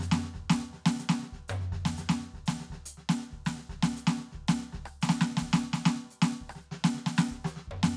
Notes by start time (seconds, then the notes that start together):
0.01 snare, hi-hat pedal
0.13 snare
0.18 snare
0.25 snare
0.37 kick
0.51 snare, hi-hat pedal
0.61 snare
0.74 snare
0.87 snare
1.00 snare, hi-hat pedal
1.10 snare
1.15 cross-stick
1.24 snare
1.34 kick, snare
1.49 hi-hat pedal, floor tom
1.61 snare
1.73 kick, snare
1.79 kick
1.87 snare
1.98 snare, hi-hat pedal
2.10 snare
2.17 snare
2.22 snare
2.35 kick, snare
2.47 snare, hi-hat pedal
2.61 snare
2.71 kick, snare
2.87 closed hi-hat
2.99 snare
3.10 snare
3.20 snare
3.32 kick, snare
3.46 snare, hi-hat pedal
3.58 snare
3.71 kick, snare
3.84 snare
3.97 snare, hi-hat pedal
4.08 snare
4.13 cross-stick
4.20 snare
4.33 kick, snare
4.43 kick
4.49 snare, hi-hat pedal
4.61 snare
4.74 kick, snare
4.87 cross-stick
5.03 snare, hi-hat pedal
5.10 snare
5.22 snare
5.38 snare
5.43 kick
5.54 snare, hi-hat pedal
5.74 snare
5.87 snare
6.12 hi-hat pedal
6.23 snare
6.42 kick
6.51 cross-stick
6.57 snare
6.62 hi-hat pedal
6.73 snare
6.85 snare
6.97 snare
7.08 snare
7.18 snare, hi-hat pedal
7.32 kick, snare
7.46 snare, hi-hat pedal
7.58 snare
7.69 kick, floor tom
7.84 snare